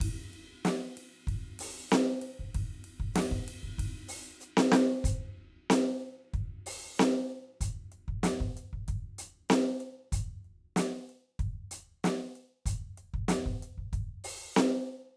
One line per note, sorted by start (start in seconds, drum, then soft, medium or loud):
0.01 kick medium
0.01 ride loud
0.34 ride soft
0.66 snare loud
0.66 ride medium
0.98 ride medium
1.28 kick medium
1.28 ride medium
1.60 open hi-hat loud
1.60 ride medium
1.92 snare loud
1.92 hi-hat pedal medium
1.92 ride medium
2.22 ride medium
2.40 kick soft
2.55 kick medium
2.55 ride medium
2.85 ride medium
3.00 kick medium
3.14 snare loud
3.14 hi-hat pedal soft
3.14 ride loud
3.32 kick medium
3.49 ride medium
3.64 kick soft
3.75 kick medium
3.75 hi-hat pedal soft
3.80 ride medium
4.08 open hi-hat loud
4.08 hi-hat pedal soft
4.41 hi-hat pedal medium
4.58 snare loud
4.73 snare loud
5.05 closed hi-hat loud
5.05 kick medium
5.38 closed hi-hat soft
5.71 closed hi-hat loud
5.71 snare loud
6.04 closed hi-hat soft
6.34 kick medium
6.34 closed hi-hat soft
6.67 open hi-hat loud
6.99 snare loud
6.99 closed hi-hat medium
6.99 hi-hat pedal medium
7.32 closed hi-hat soft
7.61 closed hi-hat loud
7.61 kick medium
7.93 closed hi-hat soft
8.09 kick medium
8.24 closed hi-hat loud
8.24 snare loud
8.41 kick medium
8.58 closed hi-hat medium
8.73 kick soft
8.89 kick medium
8.89 closed hi-hat medium
9.19 open hi-hat loud
9.50 snare loud
9.50 closed hi-hat medium
9.50 hi-hat pedal medium
9.81 closed hi-hat soft
10.13 closed hi-hat loud
10.13 kick medium
10.45 closed hi-hat soft
10.77 closed hi-hat loud
10.77 snare loud
11.10 closed hi-hat soft
11.40 kick medium
11.40 closed hi-hat soft
11.72 open hi-hat loud
12.04 snare loud
12.04 closed hi-hat medium
12.04 hi-hat pedal medium
12.36 closed hi-hat soft
12.66 closed hi-hat loud
12.66 kick medium
12.98 closed hi-hat soft
13.14 kick medium
13.29 closed hi-hat loud
13.29 snare loud
13.46 kick medium
13.63 closed hi-hat medium
13.78 kick soft
13.93 kick medium
13.93 closed hi-hat medium
14.25 open hi-hat loud
14.56 snare loud
14.56 closed hi-hat soft
14.56 hi-hat pedal medium
14.89 closed hi-hat soft